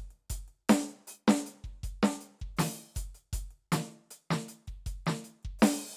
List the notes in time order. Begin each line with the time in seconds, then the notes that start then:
0.11 closed hi-hat
0.30 closed hi-hat, kick
0.49 closed hi-hat
0.70 closed hi-hat, snare
0.88 closed hi-hat
1.08 open hi-hat, hi-hat pedal
1.28 closed hi-hat, snare
1.47 closed hi-hat
1.65 kick, closed hi-hat
1.84 closed hi-hat, kick
2.03 snare, closed hi-hat
2.21 closed hi-hat
2.41 kick, closed hi-hat
2.58 open hi-hat, snare, hi-hat pedal
2.96 closed hi-hat, kick, hi-hat pedal
3.15 closed hi-hat
3.34 closed hi-hat, kick
3.51 closed hi-hat
3.73 closed hi-hat, snare
3.92 closed hi-hat
4.11 closed hi-hat
4.31 closed hi-hat, snare
4.49 closed hi-hat
4.68 kick, closed hi-hat
4.87 closed hi-hat, kick
5.07 snare, closed hi-hat
5.25 closed hi-hat
5.44 kick, closed hi-hat
5.60 open hi-hat, snare, hi-hat pedal